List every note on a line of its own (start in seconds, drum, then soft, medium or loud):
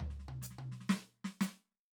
0.00 floor tom medium
0.10 snare soft
0.19 snare soft
0.28 high tom medium
0.42 snare soft
0.42 hi-hat pedal medium
0.51 snare soft
0.58 high tom medium
0.72 snare soft
0.80 snare soft
0.88 snare loud
0.88 hi-hat pedal soft
1.24 snare medium
1.41 snare loud
1.41 hi-hat pedal medium